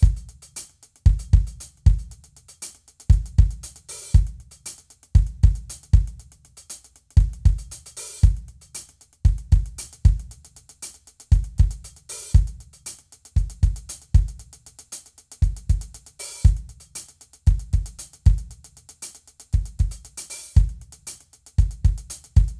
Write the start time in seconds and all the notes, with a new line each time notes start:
0.01 kick, hi-hat pedal
0.05 closed hi-hat
0.17 closed hi-hat
0.29 closed hi-hat
0.43 closed hi-hat
0.57 closed hi-hat
0.70 closed hi-hat
0.83 closed hi-hat
0.96 closed hi-hat
1.06 kick, closed hi-hat
1.20 closed hi-hat
1.34 kick, closed hi-hat
1.47 closed hi-hat
1.61 closed hi-hat
1.78 closed hi-hat
1.87 kick, closed hi-hat
1.99 closed hi-hat
2.12 closed hi-hat
2.24 closed hi-hat
2.37 closed hi-hat
2.49 closed hi-hat
2.63 closed hi-hat
2.75 closed hi-hat
2.88 closed hi-hat
3.00 closed hi-hat
3.10 kick, closed hi-hat
3.26 closed hi-hat
3.39 kick, closed hi-hat
3.51 closed hi-hat
3.64 closed hi-hat
3.76 closed hi-hat
3.89 open hi-hat
4.02 open hi-hat
4.13 kick, closed hi-hat, hi-hat pedal
4.27 closed hi-hat
4.40 closed hi-hat
4.51 closed hi-hat
4.66 closed hi-hat
4.78 closed hi-hat
4.91 closed hi-hat
5.03 closed hi-hat
5.15 kick, closed hi-hat
5.27 closed hi-hat
5.43 kick, closed hi-hat
5.56 closed hi-hat
5.70 closed hi-hat
5.84 closed hi-hat
5.94 kick, closed hi-hat
6.08 closed hi-hat
6.20 closed hi-hat
6.32 closed hi-hat
6.45 closed hi-hat
6.57 closed hi-hat
6.70 closed hi-hat
6.85 closed hi-hat
6.96 closed hi-hat
7.11 closed hi-hat
7.17 kick, closed hi-hat
7.34 closed hi-hat
7.46 kick, closed hi-hat
7.59 closed hi-hat
7.72 closed hi-hat
7.86 open hi-hat
7.97 open hi-hat
8.14 open hi-hat
8.21 kick, closed hi-hat, hi-hat pedal
8.37 closed hi-hat
8.49 closed hi-hat
8.62 closed hi-hat
8.75 closed hi-hat
8.89 closed hi-hat
9.01 closed hi-hat
9.13 closed hi-hat
9.25 kick, closed hi-hat
9.39 closed hi-hat
9.52 kick, closed hi-hat
9.66 closed hi-hat
9.79 closed hi-hat
9.93 closed hi-hat
10.05 kick, closed hi-hat
10.20 closed hi-hat
10.32 closed hi-hat
10.45 closed hi-hat
10.57 closed hi-hat
10.70 closed hi-hat
10.83 closed hi-hat
10.95 closed hi-hat
11.08 closed hi-hat
11.20 closed hi-hat
11.32 kick, closed hi-hat
11.45 closed hi-hat
11.59 kick, closed hi-hat
11.71 closed hi-hat
11.85 closed hi-hat
11.97 closed hi-hat
12.10 open hi-hat
12.23 open hi-hat
12.32 kick, closed hi-hat, hi-hat pedal
12.48 closed hi-hat
12.61 closed hi-hat
12.73 closed hi-hat
12.86 closed hi-hat
12.99 closed hi-hat
13.13 closed hi-hat
13.26 closed hi-hat
13.37 kick, closed hi-hat
13.50 closed hi-hat
13.63 kick, closed hi-hat
13.76 closed hi-hat
13.90 closed hi-hat
14.02 closed hi-hat
14.15 kick, closed hi-hat
14.29 closed hi-hat
14.40 closed hi-hat
14.53 closed hi-hat
14.67 closed hi-hat
14.79 closed hi-hat
14.93 closed hi-hat
15.06 closed hi-hat
15.18 closed hi-hat
15.32 closed hi-hat
15.42 kick, closed hi-hat
15.57 closed hi-hat
15.70 kick, closed hi-hat
15.82 closed hi-hat
15.95 closed hi-hat
16.07 closed hi-hat
16.20 open hi-hat
16.34 open hi-hat
16.43 kick, hi-hat pedal
16.47 closed hi-hat
16.70 closed hi-hat
16.80 closed hi-hat
16.96 closed hi-hat
17.09 closed hi-hat
17.21 closed hi-hat
17.34 closed hi-hat
17.47 kick, closed hi-hat
17.60 closed hi-hat
17.73 kick, closed hi-hat
17.86 closed hi-hat
17.99 closed hi-hat
18.14 closed hi-hat
18.26 kick, closed hi-hat
18.38 closed hi-hat
18.51 closed hi-hat
18.65 closed hi-hat
18.77 closed hi-hat
18.89 closed hi-hat
19.03 closed hi-hat
19.15 closed hi-hat
19.28 closed hi-hat
19.40 closed hi-hat
19.53 kick, closed hi-hat
19.66 closed hi-hat
19.79 kick, closed hi-hat
19.92 closed hi-hat
20.05 closed hi-hat
20.18 closed hi-hat
20.30 open hi-hat
20.45 open hi-hat
20.55 kick, closed hi-hat, hi-hat pedal
20.70 closed hi-hat
20.82 closed hi-hat
20.93 closed hi-hat
21.07 closed hi-hat
21.21 closed hi-hat
21.34 closed hi-hat
21.47 closed hi-hat
21.59 kick, closed hi-hat
21.71 closed hi-hat
21.85 kick, closed hi-hat
21.98 closed hi-hat
22.10 closed hi-hat
22.24 closed hi-hat
22.37 kick, closed hi-hat
22.48 closed hi-hat